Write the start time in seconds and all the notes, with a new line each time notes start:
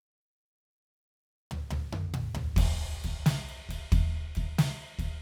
1.51 floor tom
1.71 floor tom
1.93 mid tom
2.14 high tom
2.35 floor tom
2.57 kick, ride, crash
2.81 ride
3.04 kick, ride
3.26 snare, ride
3.49 ride
3.69 kick, ride
3.92 kick, ride
4.36 kick, ride
4.59 snare, ride
4.83 ride
4.99 kick, ride